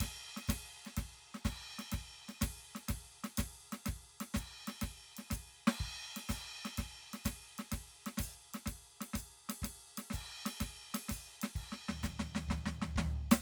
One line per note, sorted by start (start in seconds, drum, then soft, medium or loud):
0.01 kick soft
0.01 snare soft
0.01 ride loud
0.37 snare soft
0.37 ride medium
0.48 kick soft
0.48 snare medium
0.48 hi-hat pedal medium
0.48 ride loud
0.85 snare soft
0.85 ride soft
0.97 kick soft
0.97 snare soft
0.97 ride medium
1.34 snare soft
1.34 ride soft
1.45 kick soft
1.45 snare medium
1.45 hi-hat pedal medium
1.45 ride medium
1.79 snare soft
1.79 ride medium
1.92 kick soft
1.92 snare soft
1.92 ride medium
2.29 snare soft
2.29 ride soft
2.41 kick soft
2.41 snare medium
2.41 hi-hat pedal medium
2.41 ride loud
2.75 snare soft
2.75 ride medium
2.89 kick soft
2.89 snare medium
2.89 ride loud
3.24 snare medium
3.24 ride medium
3.38 kick soft
3.38 snare medium
3.38 hi-hat pedal loud
3.38 ride loud
3.73 snare soft
3.73 ride medium
3.86 kick soft
3.86 snare medium
3.86 ride medium
4.21 snare soft
4.21 ride medium
4.34 kick soft
4.34 snare medium
4.34 hi-hat pedal loud
4.34 ride medium
4.68 snare soft
4.68 ride medium
4.82 kick soft
4.82 snare medium
4.82 ride medium
5.17 snare soft
5.17 ride medium
5.31 kick soft
5.31 snare medium
5.31 hi-hat pedal loud
5.31 ride medium
5.67 snare loud
5.67 ride medium
5.80 kick soft
5.80 hi-hat pedal soft
6.16 snare soft
6.16 ride medium
6.29 kick soft
6.29 snare medium
6.29 hi-hat pedal loud
6.29 ride medium
6.65 snare soft
6.65 ride medium
6.77 kick soft
6.77 snare medium
6.77 hi-hat pedal soft
6.77 ride medium
7.13 snare soft
7.13 ride medium
7.25 kick soft
7.25 snare medium
7.25 hi-hat pedal loud
7.25 ride loud
7.58 snare soft
7.58 ride medium
7.72 kick soft
7.72 snare medium
7.72 ride loud
8.06 snare soft
8.06 ride medium
8.18 kick soft
8.18 snare medium
8.18 hi-hat pedal loud
8.18 ride loud
8.54 snare soft
8.54 ride medium
8.66 kick soft
8.66 snare medium
8.66 ride medium
9.01 snare soft
9.01 ride medium
9.14 kick soft
9.14 snare medium
9.14 hi-hat pedal loud
9.14 ride loud
9.49 snare soft
9.49 ride loud
9.62 kick soft
9.62 snare soft
9.62 ride loud
9.98 snare soft
9.98 ride loud
10.11 kick soft
10.11 snare medium
10.11 hi-hat pedal medium
10.11 ride medium
10.46 snare medium
10.46 ride loud
10.61 kick soft
10.61 snare medium
10.61 ride medium
10.94 snare medium
10.94 ride loud
11.09 kick soft
11.09 snare medium
11.09 hi-hat pedal loud
11.09 ride medium
11.42 snare medium
11.42 ride medium
11.56 kick soft
11.56 ride medium
11.72 snare soft
11.89 snare medium
11.89 floor tom medium
12.03 kick soft
12.03 snare medium
12.03 floor tom medium
12.03 hi-hat pedal loud
12.20 snare medium
12.20 floor tom medium
12.35 snare medium
12.35 floor tom medium
12.49 kick soft
12.49 snare medium
12.49 floor tom medium
12.49 hi-hat pedal soft
12.66 snare medium
12.66 floor tom medium
12.82 snare medium
12.82 floor tom medium
12.96 kick soft
12.96 snare medium
12.96 floor tom loud
13.31 open hi-hat loud
13.31 snare loud